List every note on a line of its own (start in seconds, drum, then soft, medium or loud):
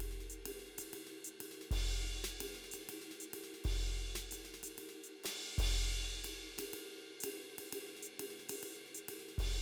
0.01 ride medium
0.11 snare soft
0.21 snare soft
0.30 hi-hat pedal medium
0.46 ride medium
0.60 snare soft
0.67 snare soft
0.79 hi-hat pedal loud
0.79 ride medium
0.94 ride medium
0.99 hi-hat pedal soft
1.07 snare soft
1.25 hi-hat pedal loud
1.41 ride medium
1.46 hi-hat pedal soft
1.52 snare soft
1.62 snare soft
1.72 kick medium
1.72 ride medium
1.89 ride soft
2.25 snare medium
2.41 ride medium
2.55 snare soft
2.64 snare soft
2.72 hi-hat pedal loud
2.72 ride medium
2.90 ride medium
3.02 snare soft
3.12 snare soft
3.21 hi-hat pedal loud
3.34 ride medium
3.44 snare soft
3.54 snare soft
3.65 kick medium
3.65 ride medium
3.79 ride soft
4.16 snare medium
4.32 hi-hat pedal loud
4.32 ride medium
4.45 snare soft
4.54 snare soft
4.64 hi-hat pedal loud
4.64 ride medium
4.79 ride medium
4.89 snare soft
5.04 hi-hat pedal medium
5.24 snare medium
5.24 ride medium
5.59 kick medium
5.59 ride medium
6.08 snare soft
6.11 snare soft
6.15 snare soft
6.24 hi-hat pedal medium
6.24 ride medium
6.59 snare soft
6.59 ride loud
6.68 hi-hat pedal soft
6.74 ride medium
7.21 hi-hat pedal loud
7.21 ride loud
7.49 snare soft
7.59 ride medium
7.66 hi-hat pedal soft
7.73 ride medium
7.87 snare soft
7.97 snare soft
8.03 hi-hat pedal loud
8.20 ride medium
8.31 snare soft
8.40 snare soft
8.49 hi-hat pedal medium
8.49 ride loud
8.63 ride medium
8.77 snare soft
8.87 snare soft
8.95 hi-hat pedal loud
9.09 ride medium
9.20 snare soft
9.29 snare soft
9.38 kick soft
9.38 snare soft
9.38 ride medium
9.54 ride soft